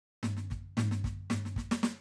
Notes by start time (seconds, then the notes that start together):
0.23 snare, floor tom
0.37 snare
0.50 kick, snare
0.77 snare, floor tom
0.91 snare
1.04 kick, snare
1.30 snare, floor tom
1.45 snare
1.56 kick, snare
1.71 snare
1.83 snare